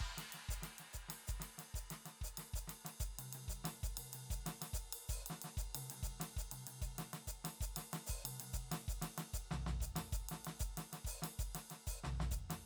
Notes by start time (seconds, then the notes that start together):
0.01 kick
0.18 snare, ride
0.33 snare, ride
0.49 kick, hi-hat pedal
0.63 snare, ride
0.79 snare, ride
0.94 kick, hi-hat pedal
1.09 snare, ride
1.28 kick, hi-hat pedal
1.40 snare, ride
1.58 snare, ride
1.74 kick, hi-hat pedal
1.91 snare, ride
2.06 snare, ride
2.22 kick, hi-hat pedal
2.38 snare, ride
2.54 kick, hi-hat pedal
2.68 snare, ride
2.85 snare, ride
3.00 kick, hi-hat pedal
3.19 high tom, ride
3.33 high tom, ride
3.48 kick, hi-hat pedal
3.65 snare, ride
3.84 kick, hi-hat pedal
3.97 high tom, ride
4.14 high tom, ride
4.31 kick, hi-hat pedal
4.46 snare, ride
4.62 snare, ride
4.74 kick, hi-hat pedal
4.93 ride
5.09 kick, hi-hat pedal
5.27 snare, ride
5.42 snare, ride
5.57 kick, hi-hat pedal
5.75 high tom, ride
5.90 high tom, ride
6.03 kick, hi-hat pedal
6.20 snare, ride
6.37 kick, hi-hat pedal
6.52 high tom, ride
6.67 high tom, ride
6.82 kick, hi-hat pedal
6.99 snare, ride
7.14 snare, ride
7.28 kick, hi-hat pedal
7.45 snare, ride
7.61 kick, hi-hat pedal
7.77 snare, ride
7.93 snare, ride
8.07 kick, hi-hat pedal
8.25 high tom, ride
8.40 high tom, ride
8.54 kick, hi-hat pedal
8.72 snare, ride
8.88 kick, hi-hat pedal
9.02 snare, ride
9.18 snare, ride
9.34 kick, hi-hat pedal
9.51 snare, floor tom
9.67 snare, floor tom
9.81 kick, hi-hat pedal
9.96 snare, ride
10.13 kick, hi-hat pedal
10.29 snare, ride
10.45 snare, ride
10.60 kick, hi-hat pedal
10.78 snare, ride
10.93 snare, ride
11.05 kick, hi-hat pedal
11.22 snare, ride
11.39 kick, hi-hat pedal
11.55 snare, ride
11.71 snare, ride
11.87 kick, hi-hat pedal
12.04 snare, floor tom
12.20 snare, floor tom
12.31 kick, hi-hat pedal
12.50 snare, ride